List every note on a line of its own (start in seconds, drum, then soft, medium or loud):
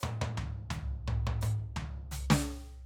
0.00 hi-hat pedal medium
0.00 high tom loud
0.04 closed hi-hat soft
0.21 high tom loud
0.37 floor tom loud
0.70 floor tom loud
0.70 hi-hat pedal soft
1.08 high tom loud
1.27 high tom loud
1.41 hi-hat pedal medium
1.41 high tom medium
1.60 kick soft
1.76 floor tom loud
2.11 snare medium
2.11 hi-hat pedal medium
2.30 snare loud